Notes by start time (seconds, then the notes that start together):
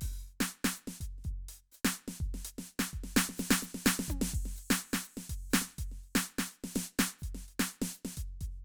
0.01 open hi-hat, kick, snare
0.11 snare
0.28 closed hi-hat
0.40 snare
0.53 closed hi-hat
0.64 snare
0.74 closed hi-hat, hi-hat pedal
0.87 snare
1.01 closed hi-hat, kick
1.18 snare
1.24 kick, closed hi-hat
1.31 kick
1.49 open hi-hat
1.72 closed hi-hat, hi-hat pedal
1.85 snare
1.98 closed hi-hat
2.08 snare
2.20 kick, closed hi-hat
2.26 kick
2.34 snare
2.45 closed hi-hat
2.58 snare
2.65 hi-hat pedal
2.69 closed hi-hat
2.79 snare
2.93 kick, closed hi-hat
3.04 snare
3.16 snare
3.29 snare
3.37 snare, hi-hat pedal
3.51 snare
3.61 snare, hi-hat pedal
3.74 snare
3.84 snare, hi-hat pedal
3.99 snare
4.08 kick, hi-hat pedal, high tom
4.21 snare
4.34 kick, crash
4.40 kick
4.45 snare
4.55 closed hi-hat, hi-hat pedal
4.70 snare
4.77 hi-hat pedal
4.93 snare
5.02 hi-hat pedal
5.07 closed hi-hat
5.17 snare
5.29 closed hi-hat, kick
5.50 closed hi-hat, snare, hi-hat pedal
5.62 snare
5.78 closed hi-hat, kick
5.92 snare
6.04 closed hi-hat
6.15 snare
6.28 closed hi-hat
6.38 snare
6.45 hi-hat pedal
6.51 closed hi-hat
6.64 snare
6.72 closed hi-hat, snare, hi-hat pedal
6.99 closed hi-hat, snare
7.18 kick, hi-hat pedal
7.23 closed hi-hat
7.35 snare
7.48 closed hi-hat
7.59 snare
7.65 hi-hat pedal
7.71 closed hi-hat
7.82 snare
7.92 closed hi-hat, hi-hat pedal
8.05 snare
8.17 closed hi-hat, kick
8.41 closed hi-hat, kick
8.46 kick, snare